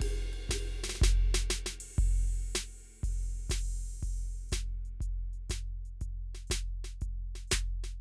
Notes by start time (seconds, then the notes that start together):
0.01 kick, ride
0.34 ride
0.50 kick, snare, ride
0.84 snare
0.90 snare
0.96 snare
1.02 kick, snare
1.35 snare
1.51 snare
1.67 snare
1.81 crash
1.99 kick, crash
2.56 open hi-hat, snare
3.04 open hi-hat, kick
3.37 open hi-hat
3.50 open hi-hat, kick, snare
3.88 open hi-hat
4.03 open hi-hat, kick
4.38 open hi-hat
4.50 closed hi-hat, kick, snare, hi-hat pedal
4.86 closed hi-hat
5.01 closed hi-hat, kick
5.34 closed hi-hat
5.50 closed hi-hat, kick, snare
5.86 closed hi-hat
6.02 closed hi-hat, kick
6.35 snare
6.48 closed hi-hat, kick, snare, hi-hat pedal
6.85 snare
7.02 closed hi-hat, kick
7.36 snare
7.48 closed hi-hat, snare, hi-hat pedal
7.53 kick
7.84 snare